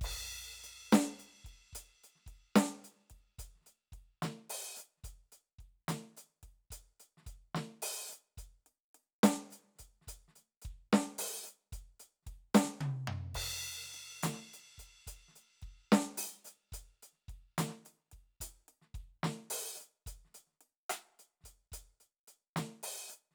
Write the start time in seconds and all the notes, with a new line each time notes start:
0.01 kick, hi-hat pedal, crash
0.08 kick
0.50 snare
0.64 closed hi-hat
0.92 open hi-hat, snare
1.19 closed hi-hat
1.44 kick, closed hi-hat
1.73 closed hi-hat, kick
2.04 closed hi-hat
2.15 snare
2.21 snare
2.26 kick, closed hi-hat
2.56 closed hi-hat, snare
2.84 closed hi-hat
3.10 kick, closed hi-hat
3.39 closed hi-hat, kick
3.55 snare
3.61 snare
3.64 closed hi-hat, snare
3.92 kick, closed hi-hat
4.22 closed hi-hat, snare
4.50 open hi-hat
4.77 closed hi-hat, hi-hat pedal
4.97 snare
5.04 closed hi-hat, kick
5.32 closed hi-hat
5.59 kick, closed hi-hat
5.88 closed hi-hat, snare
6.17 closed hi-hat, hi-hat pedal
6.43 kick, closed hi-hat
6.70 closed hi-hat, kick
7.00 closed hi-hat
7.17 snare
7.22 snare
7.26 closed hi-hat, kick, cross-stick
7.31 kick
7.55 snare, closed hi-hat
7.82 open hi-hat
8.09 closed hi-hat, hi-hat pedal
8.37 closed hi-hat, kick
8.66 closed hi-hat
8.95 closed hi-hat
9.23 closed hi-hat, snare
9.50 closed hi-hat, hi-hat pedal
9.75 closed hi-hat, snare
9.80 kick
10.01 snare
10.07 closed hi-hat, kick
10.28 snare
10.33 closed hi-hat, snare
10.37 snare
10.62 closed hi-hat, kick
10.71 kick
10.93 snare, closed hi-hat
11.18 open hi-hat, snare
11.44 closed hi-hat, hi-hat pedal
11.72 closed hi-hat, kick
12.00 closed hi-hat
12.23 kick, snare
12.27 closed hi-hat
12.54 closed hi-hat, snare
12.64 snare
12.81 high tom
13.07 mid tom
13.35 kick, crash
13.63 closed hi-hat
13.83 snare
13.91 snare, closed hi-hat
13.95 snare
14.23 closed hi-hat, snare
14.33 snare
14.53 closed hi-hat
14.78 closed hi-hat, kick
15.07 closed hi-hat, kick
15.28 snare
15.35 closed hi-hat, snare
15.62 kick, closed hi-hat
15.92 closed hi-hat, snare
16.18 open hi-hat
16.45 closed hi-hat, hi-hat pedal
16.72 closed hi-hat, kick
17.03 closed hi-hat
17.13 snare
17.28 kick, closed hi-hat
17.58 closed hi-hat, snare
17.85 snare, closed hi-hat, hi-hat pedal
18.12 kick, closed hi-hat
18.40 closed hi-hat, kick
18.68 closed hi-hat
18.82 snare
18.94 kick, closed hi-hat
19.00 kick
19.23 snare, closed hi-hat
19.50 open hi-hat
19.77 closed hi-hat, hi-hat pedal
20.06 closed hi-hat, kick
20.25 snare
20.30 snare
20.34 closed hi-hat, snare
20.47 snare
20.52 snare
20.61 closed hi-hat
20.90 closed hi-hat, cross-stick
21.19 closed hi-hat
21.41 kick, snare
21.45 closed hi-hat, snare
21.72 closed hi-hat, kick
22.00 closed hi-hat
22.28 closed hi-hat
22.56 closed hi-hat, snare
22.83 open hi-hat
23.09 closed hi-hat, hi-hat pedal
23.31 snare